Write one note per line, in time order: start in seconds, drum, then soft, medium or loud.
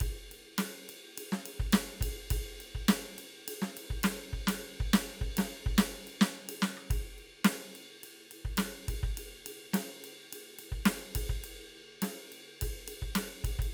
0.01 kick medium
0.01 ride loud
0.32 ride medium
0.59 snare medium
0.59 ride loud
0.90 ride medium
1.18 ride loud
1.33 snare medium
1.46 ride medium
1.60 kick medium
1.73 snare loud
1.73 ride loud
2.01 kick medium
2.01 ride loud
2.31 kick medium
2.31 ride loud
2.61 ride medium
2.75 kick soft
2.89 snare loud
2.89 ride loud
3.19 ride medium
3.48 ride loud
3.62 snare medium
3.77 ride medium
3.91 kick medium
4.04 snare loud
4.04 ride loud
4.33 kick soft
4.48 snare loud
4.48 ride loud
4.80 kick medium
4.94 snare loud
4.94 ride loud
5.22 kick medium
5.38 snare loud
5.38 ride loud
5.66 kick medium
5.78 snare loud
5.78 ride loud
6.08 ride medium
6.22 snare loud
6.49 ride loud
6.63 snare loud
6.78 cross-stick medium
6.91 kick medium
6.91 ride loud
7.19 ride soft
7.45 snare loud
7.45 ride loud
7.76 ride medium
8.04 ride medium
8.32 ride medium
8.45 kick soft
8.58 snare loud
8.58 ride loud
8.89 kick medium
8.89 ride loud
9.03 kick medium
9.18 ride loud
9.47 ride loud
9.74 snare loud
9.74 ride loud
10.05 ride medium
10.33 ride loud
10.59 ride medium
10.72 kick soft
10.86 snare loud
10.86 ride loud
11.16 kick medium
11.16 ride loud
11.30 kick medium
11.44 ride medium
12.03 snare medium
12.03 ride loud
12.33 ride medium
12.62 kick medium
12.62 ride loud
12.88 ride loud
13.02 kick soft
13.16 snare medium
13.16 ride loud
13.44 kick medium
13.44 ride loud
13.59 kick medium
13.59 ride medium